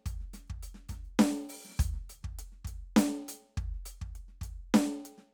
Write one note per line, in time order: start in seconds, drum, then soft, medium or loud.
0.01 snare soft
0.07 closed hi-hat medium
0.07 kick medium
0.21 snare soft
0.34 closed hi-hat medium
0.34 snare soft
0.49 kick medium
0.49 closed hi-hat soft
0.63 closed hi-hat medium
0.75 snare soft
0.90 closed hi-hat soft
0.90 kick medium
0.90 snare soft
1.05 closed hi-hat soft
1.20 open hi-hat medium
1.20 snare loud
1.50 open hi-hat medium
1.66 snare soft
1.70 snare soft
1.72 snare soft
1.78 closed hi-hat loud
1.78 kick loud
1.78 hi-hat pedal soft
1.95 snare soft
2.10 closed hi-hat medium
2.24 kick medium
2.24 snare soft
2.40 closed hi-hat medium
2.53 snare soft
2.66 kick medium
2.66 snare soft
2.66 closed hi-hat medium
2.97 closed hi-hat loud
2.97 snare loud
3.29 closed hi-hat loud
3.58 kick medium
3.58 closed hi-hat soft
3.75 snare soft
3.86 closed hi-hat medium
4.02 kick medium
4.02 snare soft
4.16 closed hi-hat soft
4.29 snare soft
4.42 kick medium
4.42 closed hi-hat medium
4.75 closed hi-hat medium
4.75 snare loud
5.06 closed hi-hat medium
5.19 snare soft